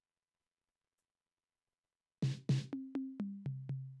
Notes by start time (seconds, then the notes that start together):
0.98 hi-hat pedal
2.23 snare
2.49 snare
2.73 high tom
2.95 high tom
3.20 mid tom
3.46 floor tom
3.69 floor tom